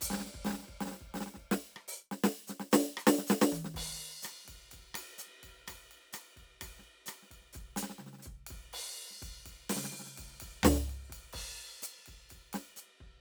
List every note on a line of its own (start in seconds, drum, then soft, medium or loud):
0.01 kick soft
0.01 hi-hat pedal loud
0.10 snare medium
0.13 snare medium
0.18 snare medium
0.20 snare medium
0.24 snare soft
0.26 snare soft
0.34 kick soft
0.39 kick soft
0.45 snare medium
0.47 snare medium
0.50 snare medium
0.53 snare medium
0.58 snare soft
0.63 snare soft
0.68 kick soft
0.73 kick soft
0.81 snare medium
0.86 snare medium
0.87 snare medium
0.92 snare soft
0.94 snare soft
1.01 kick soft
1.06 kick soft
1.14 snare medium
1.16 snare medium
1.21 snare medium
1.26 snare soft
1.34 kick soft
1.34 snare soft
1.41 kick soft
1.51 snare loud
1.76 cross-stick medium
1.88 open hi-hat loud
1.94 hi-hat pedal soft
2.11 snare medium
2.24 snare loud
2.47 snare medium
2.47 hi-hat pedal medium
2.60 snare medium
2.71 snare loud
2.71 hi-hat pedal medium
2.97 cross-stick medium
2.97 hi-hat pedal medium
3.07 snare loud
3.19 snare medium
3.27 snare loud
3.27 hi-hat pedal medium
3.42 snare loud
3.51 kick soft
3.51 hi-hat pedal medium
3.51 high tom medium
3.56 kick soft
3.65 snare medium
3.74 kick soft
3.74 snare soft
3.74 crash loud
3.81 kick soft
3.86 snare soft
3.91 snare soft
3.94 snare soft
3.97 snare soft
4.23 cross-stick medium
4.23 hi-hat pedal medium
4.23 ride medium
4.45 kick soft
4.45 snare soft
4.45 ride medium
4.53 kick soft
4.71 kick soft
4.71 hi-hat pedal soft
4.71 ride medium
4.78 kick soft
4.94 cross-stick medium
4.94 ride loud
5.18 hi-hat pedal medium
5.18 ride soft
5.27 snare soft
5.43 kick soft
5.43 ride medium
5.48 kick soft
5.67 kick soft
5.67 cross-stick medium
5.67 hi-hat pedal soft
5.67 ride medium
5.73 kick soft
5.91 ride soft
6.13 cross-stick medium
6.13 hi-hat pedal medium
6.13 ride medium
6.36 kick soft
6.36 ride soft
6.41 kick soft
6.61 kick soft
6.61 cross-stick medium
6.61 hi-hat pedal soft
6.61 ride medium
6.79 snare soft
6.84 ride soft
7.06 cross-stick medium
7.06 hi-hat pedal medium
7.06 ride medium
7.22 snare soft
7.31 kick soft
7.31 ride soft
7.41 snare soft
7.53 kick soft
7.53 hi-hat pedal medium
7.53 ride medium
7.76 snare medium
7.76 closed hi-hat medium
7.83 snare medium
7.90 snare soft
7.98 snare soft
7.98 mid tom soft
8.06 snare soft
8.13 snare soft
8.19 snare soft
8.19 hi-hat pedal medium
8.26 kick soft
8.26 snare soft
8.32 snare soft
8.35 snare soft
8.47 kick soft
8.47 ride medium
8.73 crash medium
9.10 snare soft
9.15 snare soft
9.22 kick soft
9.22 ride medium
9.28 kick soft
9.45 kick soft
9.45 snare soft
9.45 ride medium
9.70 snare medium
9.70 closed hi-hat loud
9.76 snare medium
9.76 mid tom soft
9.84 snare soft
9.91 snare soft
9.91 mid tom soft
10.00 snare soft
10.06 snare soft
10.11 snare soft
10.15 kick soft
10.15 snare soft
10.15 ride medium
10.20 kick soft
10.20 snare soft
10.24 snare soft
10.27 snare soft
10.35 snare soft
10.40 kick soft
10.40 ride medium
10.47 kick soft
10.63 snare loud
10.63 floor tom loud
10.74 snare soft
10.87 snare soft
10.87 ride soft
11.10 kick soft
11.10 ride medium
11.15 kick soft
11.33 kick soft
11.33 crash medium
11.40 kick soft
11.82 hi-hat pedal loud
11.82 ride medium
11.98 snare soft
12.06 kick soft
12.06 ride medium
12.13 kick soft
12.29 kick soft
12.29 hi-hat pedal soft
12.29 ride medium
12.36 kick soft
12.53 snare medium
12.53 ride medium
12.76 hi-hat pedal medium
12.87 snare soft
12.98 kick soft
12.98 ride soft
13.06 kick soft